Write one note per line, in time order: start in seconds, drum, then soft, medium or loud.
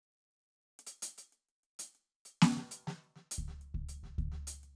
0.79 closed hi-hat soft
0.87 closed hi-hat medium
1.02 closed hi-hat loud
1.18 closed hi-hat medium
1.32 closed hi-hat soft
1.49 closed hi-hat soft
1.63 closed hi-hat soft
1.79 closed hi-hat medium
1.95 closed hi-hat soft
2.25 closed hi-hat soft
2.42 snare loud
2.57 snare soft
2.71 closed hi-hat medium
2.87 snare medium
3.04 closed hi-hat soft
3.16 snare soft
3.31 closed hi-hat loud
3.38 kick medium
3.48 snare soft
3.61 closed hi-hat soft
3.74 kick medium
3.89 closed hi-hat medium
4.03 kick soft
4.03 snare soft
4.18 kick medium
4.18 closed hi-hat soft
4.32 snare soft
4.47 closed hi-hat medium
4.47 snare soft
4.63 closed hi-hat soft